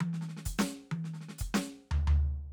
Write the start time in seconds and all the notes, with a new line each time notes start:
0.00 high tom
0.13 snare
0.21 snare
0.29 snare
0.37 snare
0.45 closed hi-hat, kick
0.58 snare, hi-hat pedal
0.91 high tom
1.04 snare
1.14 snare
1.21 snare
1.29 snare
1.38 closed hi-hat, kick
1.54 snare, hi-hat pedal
1.91 floor tom
2.07 floor tom